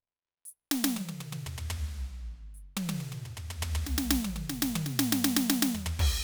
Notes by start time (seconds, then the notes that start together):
0.45 hi-hat pedal
0.71 snare
0.84 snare
0.96 high tom
1.09 high tom
1.20 mid tom
1.32 mid tom
1.46 floor tom
1.58 floor tom
1.70 floor tom
2.54 hi-hat pedal
2.77 high tom
2.89 high tom
3.00 mid tom
3.12 mid tom
3.25 floor tom
3.37 floor tom
3.50 floor tom
3.62 floor tom
3.75 floor tom
3.86 snare
3.98 snare
4.11 snare
4.24 high tom
4.36 high tom
4.49 snare
4.62 snare
4.75 mid tom
4.86 snare
4.99 snare
5.12 snare
5.24 snare
5.36 snare
5.50 snare
5.62 snare
5.75 floor tom
5.86 floor tom
5.99 kick, crash